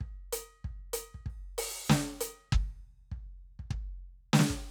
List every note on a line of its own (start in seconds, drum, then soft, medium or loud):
0.01 kick medium
0.33 closed hi-hat loud
0.65 kick medium
0.94 closed hi-hat loud
1.15 kick soft
1.26 kick medium
1.30 crash soft
1.58 open hi-hat loud
1.89 kick medium
1.89 snare loud
1.89 hi-hat pedal medium
2.21 closed hi-hat loud
2.49 kick soft
2.53 kick loud
2.57 crash soft
3.12 kick medium
3.60 kick medium
3.71 kick medium
4.34 snare loud
4.39 snare loud
4.50 kick medium